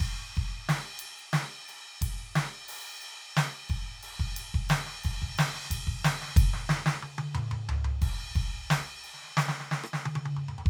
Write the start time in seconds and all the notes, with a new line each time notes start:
0.01 kick, hi-hat pedal, crash
0.36 kick, ride
0.69 snare, ride
0.99 ride
1.18 hi-hat pedal
1.33 snare, ride
1.68 hi-hat pedal, ride
2.02 kick, ride
2.36 snare, ride
2.68 open hi-hat, ride
3.01 hi-hat pedal, ride
3.37 snare, ride
3.69 kick, ride
4.03 ride
4.20 kick
4.37 ride
4.55 kick
4.70 snare, ride
4.87 snare
4.92 snare
4.97 snare
5.04 kick, ride
5.22 kick
5.38 snare, ride
5.55 snare
5.71 kick, ride
5.87 kick
6.05 snare, ride
6.22 snare
6.28 snare
6.37 kick, ride
6.54 snare
6.70 snare
6.86 snare
7.03 high tom
7.18 high tom
7.35 mid tom
7.52 mid tom
7.69 floor tom
7.85 floor tom
8.02 kick, ride
8.35 kick, ride
8.71 snare, ride
9.04 ride
9.14 snare
9.19 snare
9.23 snare
9.26 snare
9.29 snare
9.37 snare, hi-hat pedal
9.48 snare
9.60 snare
9.72 snare
9.84 cross-stick
9.94 snare
10.06 high tom
10.16 high tom
10.26 high tom
10.37 mid tom
10.49 mid tom
10.58 mid tom
10.66 kick